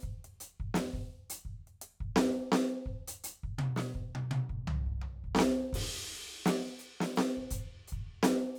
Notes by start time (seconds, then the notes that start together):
0.01 kick, hi-hat pedal
0.25 closed hi-hat
0.41 closed hi-hat
0.60 kick
0.75 snare
0.94 kick
1.30 closed hi-hat
1.46 kick
1.68 closed hi-hat
1.82 closed hi-hat
2.01 kick
2.17 snare
2.52 snare
2.86 kick
3.08 closed hi-hat
3.24 closed hi-hat
3.44 kick
3.59 high tom
3.77 snare
3.95 kick
4.15 high tom
4.32 high tom
4.50 kick
4.68 floor tom
4.86 kick
5.02 floor tom
5.24 kick
5.35 snare
5.39 snare
5.73 kick, crash, ride
6.46 snare
6.80 hi-hat pedal
7.01 snare
7.16 snare, hi-hat pedal
7.37 kick
7.51 open hi-hat, kick
7.88 open hi-hat
7.93 kick
8.23 open hi-hat, snare
8.30 snare
8.42 snare
8.56 hi-hat pedal